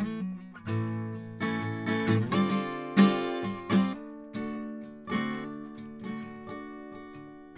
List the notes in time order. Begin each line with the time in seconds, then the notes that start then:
0.02 E3 A3
0.22 F#3 B3
0.37 F#3
0.57 E3
0.68 A2 E3 A3 C#4
1.15 A2 E3 A3
1.42 E3 A3 C#4 E4 A4
1.61 A2 E3 A3
1.88 E3 A3 C#4 E4 A4
2.09 A2 E3 A3 C#4
2.32 D3 F4 A4 D5
2.36 G3 C4
2.51 G3 C4 F4 A4
2.98 D3 G3 C4 F4 A4 D5
3.44 D3 G3 C4 F4
3.71 D3 G3 C4 F4 A4 D5
3.95 A3 D4
4.35 D3 A3 D4 F#4
4.83 D3 A3 D4
5.09 D5
5.13 D3 A3 C4 F#4
5.46 D4
5.66 D3
5.78 D3 A3
5.86 D4
6.01 D5
6.06 A3 C4 F#4
6.11 D3
6.24 D3
6.49 D4 F#4 D5
6.94 F#4 D5
7.17 D3